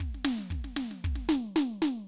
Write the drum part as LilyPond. \new DrumStaff \drummode { \time 4/4 \tempo 4 = 114 <bd sn>16 sn16 sn16 sn16 <bd sn>16 sn16 sn16 sn16 <bd sn>16 sn16 sn8 sn8 sn8 | }